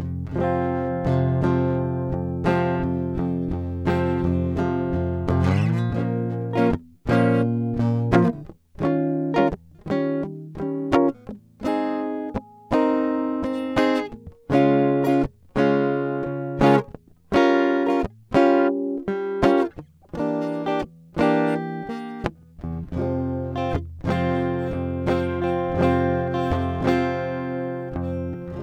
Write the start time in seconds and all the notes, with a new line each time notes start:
0.00 F2 C3
0.29 F2
0.34 C3 F3
0.43 C4 F4
1.07 F2 C3 F3
1.44 C3 F3 C4
2.15 F2 C3
2.46 C3 F3 C4
2.51 F4
2.81 F4
2.85 F2
3.20 F2 C3
3.54 F2 C3
3.88 C3 F3 C4
3.92 F4
4.20 F4
4.27 F2 C3
4.59 C3 F3
4.96 F2 C3
5.08 F4
5.30 G2 C3 F3
5.69 F3
5.93 A#2
5.97 F3 A#3 C#4
6.02 F4 A#4
6.55 F4 A#4
6.60 F3 A#3 C#4
7.09 A#2 F3 A#3
7.14 C#4 F4
7.80 A#2 F3
8.14 F3 A#3 C#4 F4
8.19 A#4
8.81 D#3 G#3
8.86 C#4 F4 A#4
9.36 C#4 F4 A#4
9.41 G#3
9.88 D#3 G3
9.94 C#4 F4
10.25 G3
10.57 D#3 G3
10.64 C#4
10.94 C#4 F4 A#4
11.68 D#4 G#4
11.80 C4
12.74 C4 D#4 A#4
13.46 C4
13.79 C4 D#4 G#4
14.52 C#3 G#3 C#4
14.57 F4
15.06 C#4 F4 A#4
15.58 C#3 G#3 C#4
15.62 F4
16.25 C#3
16.62 C#3 G#3 C#4
16.66 F4 A#4
17.34 G3 C#4 F4
17.39 A#4
17.89 C#4 F4 A#4
18.35 G3 C#4
18.39 F4 A#4
19.10 G3 C#4
19.45 G3 C#4 F4 A#4
20.16 E3 A#3
20.21 D4 G4
20.68 A#3 D4 G4
21.17 E3 A#3
21.23 D4 G4
21.92 A#3
22.64 E2 C3
22.94 F2 C3
23.00 F3 C4
23.58 C4 F4
24.07 F2 C3 F3
24.12 C4 F4
24.73 F2 C3
25.09 F3 C4 F4
25.44 C4 F4
25.77 F2 C3
25.82 F3 C4 F4
26.36 C4 F4
26.54 F2 C3 F3
26.85 C3 F3
26.89 C4 F4
27.98 F2